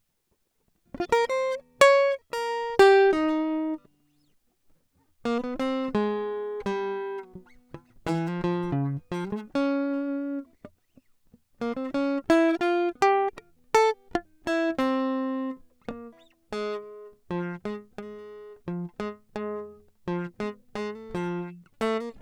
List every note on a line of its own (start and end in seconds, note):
1.14 1.29 A#4
1.31 1.62 C5
1.82 2.20 C#5
2.34 2.56 A#4
2.34 2.79 A#4
2.80 3.18 G4
3.14 3.80 D#4
5.26 5.43 A#3
5.46 5.59 B3
5.61 5.94 C4
5.96 6.64 G#3
6.67 7.24 G3
8.07 8.29 E3
8.29 8.45 F3
8.46 8.81 F3
8.73 9.02 C#3
9.12 9.31 F3
9.32 9.40 G#3
9.56 10.49 C#4
11.62 11.76 A#3
11.78 11.93 C4
11.96 12.24 C#4
12.31 12.60 E4
12.62 12.95 F4
13.03 13.33 G4
13.75 13.96 A4
14.48 14.79 E4
14.79 15.57 C4
15.89 16.16 A#3
16.53 16.81 G#3
17.32 17.62 F3
17.66 17.89 G#3
17.99 18.63 G#3
18.69 18.94 F3
19.01 19.20 G#3
19.37 19.68 G#3
20.09 20.34 F3
20.41 20.56 G#3
20.76 20.87 G#3
20.87 20.94 G#3
21.16 21.43 F3
21.82 21.95 A3
21.96 22.15 A#3